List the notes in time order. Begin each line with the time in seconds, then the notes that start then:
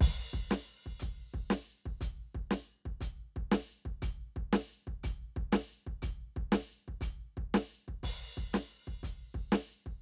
0.01 kick, crash
0.34 kick
0.51 closed hi-hat, snare
0.86 kick
1.00 closed hi-hat, kick
1.34 kick
1.51 closed hi-hat, snare
1.86 kick
2.01 closed hi-hat, kick
2.35 kick
2.51 closed hi-hat, snare
2.86 kick
3.01 closed hi-hat, kick
3.36 kick
3.52 closed hi-hat, snare
3.86 kick
4.02 closed hi-hat, kick
4.36 kick
4.53 closed hi-hat, snare
4.87 kick
5.04 closed hi-hat, kick
5.37 kick
5.53 closed hi-hat, snare
5.87 kick
6.03 closed hi-hat, kick
6.37 kick
6.52 closed hi-hat, snare
6.88 kick
7.01 closed hi-hat, kick
7.37 kick
7.54 closed hi-hat, snare
7.88 kick
8.04 kick, crash
8.38 kick
8.54 closed hi-hat, snare
8.88 kick
9.03 closed hi-hat, kick
9.35 kick
9.52 closed hi-hat, snare
9.86 kick